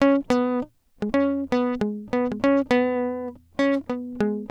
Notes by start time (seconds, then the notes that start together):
0.02 C#4
0.31 B3
1.15 C#4
1.53 B3
1.82 G#3
2.14 B3
2.33 G#3
2.45 C#4
2.71 B3
3.60 C#4
3.90 B3
4.21 G#3